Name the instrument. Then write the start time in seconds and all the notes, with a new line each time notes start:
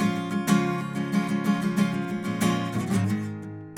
acoustic guitar
0.00 A#2 F3 G#3 C#4 F4
0.16 G#3
0.30 C#3 F3 G#3 C#4 F4
0.49 C#3 F3 G#3 C#4 F4
0.79 C#3 G#3 C#4 F4
0.95 C#3 F3 G#3 C#4 F4
1.14 C#3 F3 G#3 C#4 F4
1.28 C#3 F3 G#3 C#4 F4
1.46 C#3 F3 G#3 C#4 F4
1.61 C#3 F3 G#3 C#4 F4
1.78 C#3 F3 G#3 C#4 F4
1.93 F3 G#3 C#4 F4
2.10 F3 G#3 C#4 F4
2.24 A#2 F3 G#3 C#4 F4
2.42 A#2 F3 G#3 C#4 F4
2.74 C3 F3 A3 C#4 F#4
2.80 G#2
2.93 B3
2.99 G#4
3.05 D#3
3.11 G#2 G#3
3.43 G#2